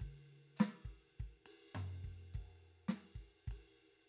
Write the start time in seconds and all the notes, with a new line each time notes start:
0.01 kick, ride
0.57 snare, hi-hat pedal, ride
0.85 kick
1.20 kick
1.47 ride
1.75 floor tom, hi-hat pedal
2.05 kick
2.35 kick, crash
2.89 snare, hi-hat pedal, ride
3.16 kick
3.48 kick, ride